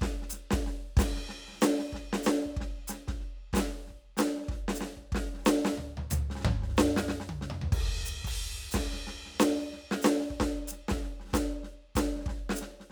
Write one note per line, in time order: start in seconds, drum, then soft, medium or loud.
0.01 kick medium
0.01 snare medium
0.22 snare soft
0.29 snare soft
0.29 hi-hat pedal loud
0.51 kick medium
0.51 snare loud
0.66 snare soft
0.97 kick loud
0.97 snare loud
0.97 hi-hat pedal loud
0.97 ride loud
1.16 snare soft
1.29 snare soft
1.48 snare soft
1.52 snare soft
1.55 snare soft
1.61 snare soft
1.61 snare loud
1.61 hi-hat pedal loud
1.66 snare soft
1.79 snare soft
1.92 kick soft
1.92 snare soft
2.13 snare loud
2.23 snare loud
2.23 hi-hat pedal medium
2.41 snare soft
2.45 kick soft
2.45 snare soft
2.56 kick medium
2.60 snare medium
2.78 snare soft
2.87 snare medium
2.87 hi-hat pedal loud
2.93 snare soft
3.07 kick medium
3.07 snare medium
3.20 snare soft
3.53 kick medium
3.53 snare loud
3.53 hi-hat pedal loud
3.57 snare loud
3.69 snare soft
3.71 snare soft
3.86 kick soft
3.86 snare soft
3.90 snare soft
3.92 snare soft
4.17 snare medium
4.17 hi-hat pedal loud
4.19 snare loud
4.27 snare soft
4.30 snare soft
4.36 snare soft
4.42 snare soft
4.46 kick medium
4.46 snare soft
4.49 snare soft
4.52 snare soft
4.68 snare loud
4.75 hi-hat pedal loud
4.81 snare medium
4.85 snare soft
4.97 kick soft
5.12 kick medium
5.12 snare medium
5.33 snare soft
5.38 snare soft
5.41 snare soft
5.41 hi-hat pedal loud
5.46 snare loud
5.65 snare loud
5.72 kick soft
5.77 floor tom medium
5.97 floor tom medium
6.10 floor tom loud
6.10 hi-hat pedal loud
6.30 snare medium
6.35 snare medium
6.40 snare soft
6.44 kick medium
6.44 floor tom loud
6.62 snare soft
6.68 snare soft
6.74 snare soft
6.74 hi-hat pedal medium
6.78 snare loud
6.96 snare loud
7.04 kick soft
7.08 snare medium
7.20 snare medium
7.29 high tom medium
7.41 snare medium
7.50 mid tom loud
7.61 floor tom loud
7.72 kick medium
7.72 ride loud
8.05 hi-hat pedal loud
8.24 kick medium
8.24 crash loud
8.71 kick medium
8.71 snare loud
8.71 hi-hat pedal loud
8.71 ride loud
8.93 snare soft
9.07 snare medium
9.25 snare soft
9.30 snare soft
9.34 snare soft
9.37 snare soft
9.37 hi-hat pedal loud
9.40 snare loud
9.58 snare soft
9.73 snare soft
9.91 snare loud
10.02 snare loud
10.02 hi-hat pedal medium
10.20 snare soft
10.30 kick soft
10.40 kick medium
10.40 snare medium
10.67 snare soft
10.67 hi-hat pedal loud
10.88 kick medium
10.88 snare loud
11.04 snare soft
11.20 snare soft
11.24 snare soft
11.28 snare soft
11.32 kick medium
11.32 snare soft
11.34 snare medium
11.34 hi-hat pedal loud
11.50 snare soft
11.63 snare soft
11.95 kick medium
11.95 snare loud
11.95 hi-hat pedal loud
12.03 snare soft
12.15 snare soft
12.20 snare soft
12.23 kick medium
12.23 snare soft
12.28 snare medium
12.36 snare soft
12.49 snare loud
12.55 hi-hat pedal loud
12.61 snare medium
12.80 snare soft